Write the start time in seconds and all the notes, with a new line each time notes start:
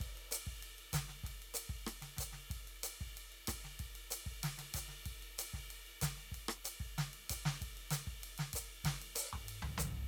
0.01 kick, ride
0.18 ride
0.32 hi-hat pedal, ride
0.47 kick
0.63 ride
0.79 ride
0.94 kick, snare, hi-hat pedal, ride
1.09 snare
1.24 kick, snare, ride
1.43 ride
1.55 hi-hat pedal, ride
1.70 kick
1.87 cross-stick, ride
2.02 snare, ride
2.17 kick, snare, hi-hat pedal, ride
2.33 snare
2.51 kick, ride
2.68 ride
2.84 hi-hat pedal, ride
3.01 kick, snare
3.18 ride
3.33 ride
3.48 kick, cross-stick, hi-hat pedal, ride
3.65 snare
3.80 kick, ride
3.96 ride
4.11 hi-hat pedal, ride
4.27 kick
4.44 snare, ride
4.59 snare, ride
4.75 kick, snare, hi-hat pedal, ride
4.89 snare
5.06 kick, ride
5.23 ride
5.39 hi-hat pedal, ride
5.54 kick, snare
5.71 ride
5.87 ride
6.02 kick, snare, hi-hat pedal, ride
6.18 snare
6.32 kick, ride
6.49 cross-stick
6.65 hi-hat pedal, ride
6.81 kick
6.99 snare, ride
7.14 ride
7.30 kick, hi-hat pedal, ride
7.46 snare
7.62 kick, ride
7.78 ride
7.91 snare, hi-hat pedal, ride
8.08 kick
8.24 ride
8.39 snare, ride
8.54 kick, hi-hat pedal, ride
8.85 kick, snare, ride
9.02 ride
9.16 hi-hat pedal, ride
9.34 kick, high tom
9.49 ride
9.63 floor tom
9.79 kick, floor tom, hi-hat pedal